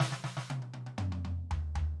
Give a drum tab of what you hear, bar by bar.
SD |oooo------------|
T1 |----oooo--------|
T2 |--------ooo-----|
FT |------------o-o-|